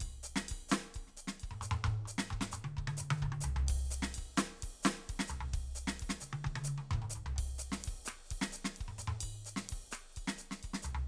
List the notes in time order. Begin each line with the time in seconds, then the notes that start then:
0.01 kick, ride bell
0.10 kick
0.23 hi-hat pedal
0.28 ride
0.36 snare
0.49 kick, ride bell
0.69 snare, hi-hat pedal
0.95 kick, ride bell
1.07 snare
1.17 hi-hat pedal, ride
1.28 snare
1.40 kick, ride bell
1.51 mid tom
1.62 hi-hat pedal, mid tom
1.67 ride
1.72 mid tom
1.85 kick, mid tom
1.94 kick
2.06 hi-hat pedal, mid tom
2.19 snare
2.29 hi-hat pedal, mid tom
2.33 kick
2.39 kick
2.41 kick, snare
2.52 hi-hat pedal, mid tom
2.65 high tom
2.77 kick, mid tom
2.88 high tom
2.97 hi-hat pedal, mid tom
3.11 high tom
3.17 hi-hat pedal
3.22 kick, mid tom
3.30 kick, high tom
3.41 floor tom, hi-hat pedal
3.57 floor tom
3.67 kick, ride, floor tom
3.79 kick
3.91 hi-hat pedal, ride
4.03 snare
4.11 hi-hat pedal, ride bell
4.18 kick
4.37 snare, hi-hat pedal
4.58 hi-hat pedal
4.63 kick, ride
4.83 snare, hi-hat pedal
5.03 hi-hat pedal
5.10 kick, ride
5.20 snare
5.28 floor tom, hi-hat pedal
5.41 floor tom
5.54 kick, ride
5.75 hi-hat pedal, ride
5.88 snare
5.96 hi-hat pedal, ride
6.02 kick
6.10 snare
6.21 hi-hat pedal, high tom
6.33 high tom
6.45 kick, high tom
6.53 kick, high tom
6.64 hi-hat pedal, high tom
6.78 high tom
6.91 kick, mid tom
7.02 kick, mid tom
7.10 hi-hat pedal
7.16 floor tom
7.27 floor tom
7.37 kick, ride, floor tom
7.48 kick
7.59 hi-hat pedal
7.64 ride
7.72 snare
7.80 hi-hat pedal
7.85 kick, ride
7.94 kick
7.96 kick
8.06 cross-stick, hi-hat pedal
8.26 hi-hat pedal
8.31 kick, ride
8.42 snare
8.52 hi-hat pedal, ride
8.65 snare
8.74 hi-hat pedal, ride
8.81 kick
8.88 mid tom
8.99 hi-hat pedal, mid tom
9.08 mid tom
9.20 kick, hi-hat pedal, ride bell
9.45 hi-hat pedal, ride
9.57 snare
9.66 hi-hat pedal, ride
9.72 kick
9.92 cross-stick, hi-hat pedal
10.12 hi-hat pedal
10.17 kick, ride bell
10.28 snare
10.38 hi-hat pedal, ride
10.52 snare
10.59 hi-hat pedal
10.63 kick, ride bell
10.74 snare
10.83 floor tom, hi-hat pedal
10.95 floor tom